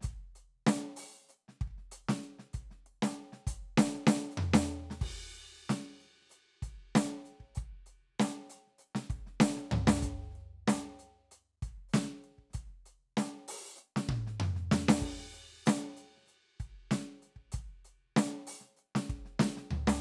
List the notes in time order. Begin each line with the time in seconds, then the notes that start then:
0.01 closed hi-hat, kick, snare
0.06 snare
0.10 kick
0.13 kick
0.36 closed hi-hat
0.67 closed hi-hat, snare
0.97 open hi-hat
1.29 closed hi-hat, hi-hat pedal
1.48 snare
1.61 kick, closed hi-hat
1.68 kick
1.71 kick
1.78 snare
1.92 closed hi-hat
2.09 snare
2.23 closed hi-hat
2.39 snare
2.54 closed hi-hat, kick
2.62 kick
2.71 snare
2.87 closed hi-hat
3.03 snare
3.33 snare
3.47 closed hi-hat, kick
3.54 kick
3.57 kick
3.78 snare
3.94 snare
4.07 snare
4.23 snare
4.31 hi-hat pedal
4.38 mid tom
4.54 snare
4.90 snare
5.02 kick, snare, crash
5.08 kick
5.11 kick
5.34 snare
5.40 closed hi-hat
5.70 closed hi-hat, snare
6.00 closed hi-hat
6.22 snare
6.30 closed hi-hat, hi-hat pedal
6.63 closed hi-hat, kick
6.68 kick
6.95 open hi-hat, snare, hi-hat pedal
7.26 closed hi-hat
7.40 kick
7.55 open hi-hat, kick, hi-hat pedal
7.86 closed hi-hat
8.20 closed hi-hat, snare
8.50 open hi-hat
8.67 snare
8.79 closed hi-hat, hi-hat pedal
8.95 snare
9.10 kick, closed hi-hat
9.16 kick
9.19 kick
9.27 snare
9.40 snare
9.56 snare
9.72 floor tom
9.88 snare
9.95 snare
10.03 closed hi-hat, kick
10.08 kick
10.11 kick
10.22 snare
10.31 snare
10.35 snare, closed hi-hat
10.39 snare
10.68 open hi-hat, snare
10.80 snare
10.99 closed hi-hat
11.32 closed hi-hat
11.63 closed hi-hat, kick
11.68 kick
11.71 kick
11.89 hi-hat pedal
11.94 closed hi-hat, snare
12.04 snare
12.24 closed hi-hat
12.39 kick
12.50 closed hi-hat, snare
12.55 kick
12.66 snare
12.86 closed hi-hat
13.17 closed hi-hat, snare
13.48 open hi-hat
13.77 closed hi-hat, hi-hat pedal
13.96 snare
14.09 kick, high tom
14.27 snare
14.40 mid tom
14.56 snare
14.72 snare
14.89 snare
15.02 kick, crash
15.08 kick
15.19 snare
15.25 snare
15.29 snare
15.32 closed hi-hat, snare
15.66 closed hi-hat, snare
15.97 closed hi-hat
16.17 snare
16.23 snare, hi-hat pedal
16.27 closed hi-hat, snare
16.60 closed hi-hat, kick
16.91 open hi-hat, snare, hi-hat pedal
17.23 closed hi-hat
17.36 kick
17.49 snare
17.51 closed hi-hat, kick, snare
17.60 kick
17.85 closed hi-hat
18.17 closed hi-hat, snare
18.47 open hi-hat
18.61 snare
18.77 closed hi-hat, hi-hat pedal
18.95 snare
19.10 kick, closed hi-hat
19.16 kick
19.19 kick
19.25 snare
19.40 snare
19.57 snare
19.71 floor tom
19.88 snare